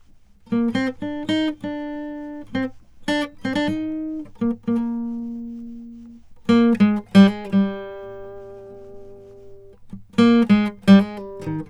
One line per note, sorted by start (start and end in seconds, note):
0.53 0.74 A#3
0.76 0.95 C4
1.03 1.26 D4
1.30 1.57 D#4
1.65 2.46 D4
2.56 2.75 C4
3.09 3.31 D4
3.46 3.56 C4
3.57 3.68 D4
3.69 4.32 D#4
4.42 4.56 A#3
4.68 6.22 A#3
6.50 6.77 A#3
6.81 7.06 G#3
7.16 7.28 G3
7.28 7.50 G#4
7.54 9.79 G3
10.19 10.46 A#3
10.50 10.76 G#3
10.88 11.00 G3
11.01 11.19 G#4
11.19 11.60 G3
11.48 11.65 D#3